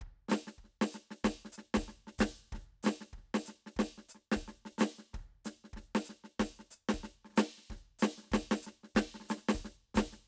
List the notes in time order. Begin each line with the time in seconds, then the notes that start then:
0.00 kick
0.28 snare, hi-hat pedal
0.31 snare
0.47 snare
0.58 kick
0.64 snare
0.81 snare
0.92 snare, hi-hat pedal
1.10 snare
1.24 kick, snare
1.45 snare
1.52 hi-hat pedal
1.58 snare
1.74 kick, snare
1.88 snare
2.07 snare
2.18 kick, snare, hi-hat pedal
2.52 kick, snare
2.83 snare, hi-hat pedal
2.86 snare
3.01 snare
3.13 kick
3.17 snare
3.34 snare
3.45 snare, hi-hat pedal
3.66 snare
3.76 kick, snare
3.97 snare
4.09 hi-hat pedal
4.15 snare
4.31 snare
4.36 kick
4.48 snare
4.65 snare
4.78 snare, hi-hat pedal
4.81 snare
4.98 snare
5.13 kick, snare
5.44 snare, hi-hat pedal
5.64 snare
5.73 kick, snare
5.95 snare
6.04 hi-hat pedal
6.09 snare
6.24 snare
6.39 kick, snare
6.59 snare
6.70 snare, hi-hat pedal
6.89 snare
6.94 kick
7.03 snare
7.24 snare
7.29 snare
7.33 snare
7.35 snare, hi-hat pedal
7.37 snare
7.58 snare
7.70 kick, snare
7.99 snare, hi-hat pedal
8.17 snare
8.23 snare
8.26 snare
8.31 kick, snare
8.51 snare
8.62 hi-hat pedal
8.66 snare
8.83 snare
8.95 kick, snare
9.14 snare
9.20 snare
9.28 snare, hi-hat pedal
9.37 snare
9.49 snare
9.54 kick
9.64 snare
9.94 kick, snare, hi-hat pedal
9.97 snare
10.12 snare